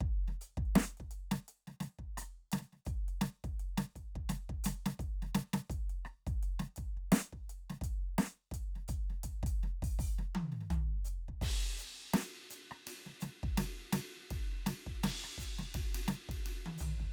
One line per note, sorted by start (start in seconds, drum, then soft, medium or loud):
0.01 kick medium
0.28 snare soft
0.41 closed hi-hat medium
0.57 kick medium
0.66 closed hi-hat soft
0.76 snare loud
0.97 kick soft
0.97 closed hi-hat soft
1.11 closed hi-hat medium
1.32 snare medium
1.48 closed hi-hat medium
1.67 snare soft
1.81 snare medium
1.81 closed hi-hat medium
1.99 kick soft
2.18 open hi-hat loud
2.18 cross-stick medium
2.22 cross-stick soft
2.52 snare medium
2.52 open hi-hat medium
2.58 snare soft
2.73 snare soft
2.85 kick medium
2.85 closed hi-hat soft
2.85 hi-hat pedal soft
3.08 closed hi-hat soft
3.21 snare medium
3.44 kick soft
3.44 closed hi-hat soft
3.60 closed hi-hat soft
3.78 snare medium
3.96 kick soft
3.96 closed hi-hat soft
4.16 kick soft
4.29 snare medium
4.29 closed hi-hat medium
4.50 kick soft
4.64 closed hi-hat loud
4.64 snare medium
4.86 snare medium
5.00 kick medium
5.00 closed hi-hat soft
5.22 snare soft
5.35 snare loud
5.54 snare medium
5.70 kick medium
5.70 open hi-hat medium
5.90 open hi-hat soft
6.05 cross-stick medium
6.27 kick medium
6.27 closed hi-hat soft
6.43 closed hi-hat soft
6.60 snare medium
6.76 kick soft
6.76 closed hi-hat medium
6.97 kick soft
7.12 open hi-hat loud
7.12 snare loud
7.33 kick soft
7.50 open hi-hat medium
7.70 snare soft
7.82 kick soft
7.82 open hi-hat medium
8.18 open hi-hat medium
8.18 snare medium
8.52 kick soft
8.52 open hi-hat medium
8.76 snare soft
8.88 open hi-hat medium
8.88 kick soft
9.10 snare soft
9.24 kick soft
9.24 open hi-hat medium
9.43 kick medium
9.43 open hi-hat medium
9.63 snare soft
9.83 kick soft
9.83 open hi-hat medium
9.99 open hi-hat medium
9.99 kick medium
10.19 snare soft
10.35 high tom loud
10.52 snare soft
10.61 snare soft
10.71 floor tom loud
10.71 hi-hat pedal soft
11.05 hi-hat pedal medium
11.29 kick soft
11.42 kick medium
11.42 crash loud
11.42 ride loud
11.79 hi-hat pedal medium
12.14 snare loud
12.14 ride loud
12.50 hi-hat pedal medium
12.50 ride medium
12.71 cross-stick medium
12.87 hi-hat pedal medium
12.87 ride loud
13.06 snare soft
13.21 snare soft
13.21 hi-hat pedal medium
13.21 ride medium
13.43 kick medium
13.58 snare medium
13.58 ride loud
13.93 snare loud
13.93 ride loud
14.17 snare soft
14.31 kick soft
14.31 ride medium
14.67 snare medium
14.67 ride loud
14.87 kick soft
15.04 snare medium
15.04 ride loud
15.24 cross-stick medium
15.38 kick soft
15.38 hi-hat pedal medium
15.38 ride soft
15.59 snare soft
15.75 kick soft
15.75 ride loud
15.95 ride loud
16.08 snare medium
16.29 kick soft
16.29 ride medium
16.46 ride medium
16.66 open hi-hat soft
16.66 high tom loud
16.78 floor tom loud
16.78 hi-hat pedal medium
17.00 kick soft
17.00 snare soft